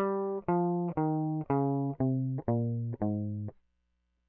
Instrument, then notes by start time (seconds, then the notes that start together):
electric guitar
0.00 G3
0.49 F3
0.98 D#3
1.51 C#3
2.01 C3
2.49 A#2
3.03 G#2